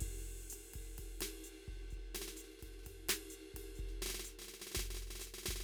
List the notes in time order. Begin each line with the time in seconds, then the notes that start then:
0.01 kick, crash
0.08 kick
0.50 hi-hat pedal, ride
0.66 snare
0.74 kick, ride
0.81 kick
0.97 kick, hi-hat pedal, ride
1.04 kick
1.21 snare, ride
1.44 hi-hat pedal
1.55 snare
1.66 kick, ride
1.74 kick
1.89 kick, snare, hi-hat pedal, ride
1.98 kick
2.15 snare, ride
2.22 snare
2.28 snare
2.37 snare, hi-hat pedal, ride
2.44 snare
2.52 snare
2.59 kick, snare, ride
2.66 kick, snare
2.73 snare
2.79 snare
2.84 kick, snare, hi-hat pedal, ride
2.92 kick
3.09 snare, ride
3.31 hi-hat pedal
3.35 snare
3.41 snare
3.55 kick, ride
3.60 kick
3.76 kick, hi-hat pedal
3.85 kick
3.89 snare
4.02 snare
4.06 snare
4.09 snare
4.15 snare
4.20 snare
4.25 snare, hi-hat pedal
4.29 snare
4.39 snare
4.42 snare
4.45 snare
4.49 snare
4.54 snare
4.60 snare
4.62 snare
4.67 snare
4.72 snare, hi-hat pedal
4.75 kick, snare
4.80 kick, snare
4.86 snare
4.91 snare
4.95 snare
4.97 snare
5.03 snare
5.07 snare
5.11 snare
5.16 snare
5.20 snare, hi-hat pedal
5.22 snare
5.27 snare
5.34 snare
5.39 snare
5.44 snare
5.46 kick, snare
5.51 kick, snare
5.56 snare
5.61 snare